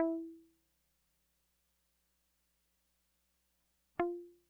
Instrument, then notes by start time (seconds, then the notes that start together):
electric guitar
0.00 E4
4.00 F4